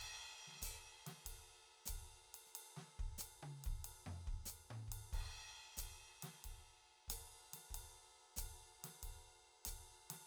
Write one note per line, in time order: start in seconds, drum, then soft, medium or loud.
0.02 ride soft
0.47 snare soft
0.51 snare soft
0.55 snare soft
0.59 kick soft
0.59 snare soft
0.59 hi-hat pedal medium
0.63 ride medium
1.07 snare soft
1.07 ride medium
1.26 kick soft
1.26 ride medium
1.86 kick soft
1.86 hi-hat pedal medium
1.86 ride medium
2.35 ride medium
2.47 hi-hat pedal soft
2.56 ride medium
2.77 snare soft
2.99 kick soft
3.18 hi-hat pedal medium
3.18 ride medium
3.43 high tom soft
3.64 kick soft
3.64 ride medium
3.85 ride medium
4.06 floor tom soft
4.27 kick soft
4.46 hi-hat pedal medium
4.50 ride medium
4.71 mid tom medium
4.88 kick soft
4.92 ride medium
5.13 kick soft
5.13 ride medium
5.77 kick soft
5.77 hi-hat pedal medium
5.77 ride medium
6.23 snare soft
6.23 ride medium
6.44 kick soft
6.44 ride medium
7.08 kick soft
7.08 hi-hat pedal medium
7.08 ride loud
7.53 snare soft
7.53 ride medium
7.71 kick soft
7.75 ride medium
8.37 kick soft
8.37 hi-hat pedal medium
8.37 ride medium
8.84 snare soft
8.84 ride medium
9.03 kick soft
9.03 ride medium
9.65 kick soft
9.65 hi-hat pedal medium
9.65 ride medium
10.10 snare soft
10.10 ride medium